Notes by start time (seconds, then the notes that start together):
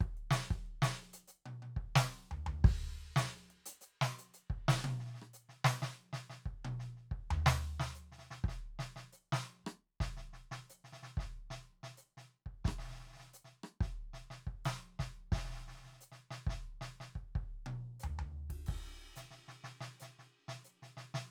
0.01 kick, closed hi-hat
0.18 closed hi-hat
0.31 snare
0.51 kick, closed hi-hat
0.67 closed hi-hat
0.83 snare
1.14 closed hi-hat
1.28 hi-hat pedal
1.46 high tom
1.63 high tom
1.77 kick
1.96 snare
2.32 floor tom
2.47 floor tom
2.65 kick, crash
3.00 closed hi-hat
3.17 snare
3.33 closed hi-hat
3.51 closed hi-hat
3.66 closed hi-hat
3.82 hi-hat pedal
4.02 snare
4.19 closed hi-hat
4.34 closed hi-hat
4.50 kick
4.69 snare
4.75 snare
4.85 high tom
5.00 snare
5.06 snare
5.10 snare
5.15 snare
5.22 cross-stick
5.34 hi-hat pedal
5.49 snare
5.65 snare
5.83 snare
6.13 snare
6.30 snare
6.46 kick
6.65 high tom
6.80 snare
6.97 snare
7.12 kick
7.31 floor tom
7.47 snare
7.80 snare
7.95 hi-hat pedal
8.12 snare
8.19 snare
8.24 snare
8.31 snare
8.45 kick
8.49 snare
8.80 snare
8.97 snare
9.13 hi-hat pedal
9.33 snare
9.65 kick, cross-stick
10.01 kick, snare
10.17 snare
10.34 snare
10.52 snare
10.70 hi-hat pedal
10.85 snare
10.93 snare
10.98 snare
11.03 snare
11.18 kick, snare
11.51 snare
11.84 snare
11.98 hi-hat pedal
12.18 snare
12.47 kick
12.65 kick, cross-stick, snare
12.79 snare
12.84 snare
12.88 snare
12.91 snare
12.95 snare
13.00 snare
13.04 snare
13.08 snare
13.12 snare
13.13 snare
13.17 snare
13.20 snare
13.25 snare
13.28 snare
13.34 hi-hat pedal
13.45 snare
13.64 cross-stick
13.81 kick, snare
14.14 snare
14.31 snare
14.47 kick
14.65 snare, hi-hat pedal
15.00 kick, snare
15.33 kick, snare
15.36 snare
15.39 snare
15.45 snare
15.50 snare
15.53 snare
15.56 snare
15.61 snare
15.66 snare
15.68 snare
15.72 snare
15.75 snare
15.78 snare
15.84 snare
15.87 snare
15.90 snare
15.93 snare
15.97 snare
16.01 hi-hat pedal
16.12 snare
16.31 snare
16.47 kick, snare
16.82 snare
17.01 snare
17.16 kick
17.36 kick
17.67 high tom
18.00 floor tom, hi-hat pedal
18.19 floor tom
18.50 kick, ride
18.67 kick, crash
19.16 snare, hi-hat pedal
19.31 snare
19.49 snare
19.64 snare
19.81 snare
20.00 snare, hi-hat pedal
20.19 snare
20.49 snare
20.65 hi-hat pedal
20.83 snare
20.98 snare
21.15 snare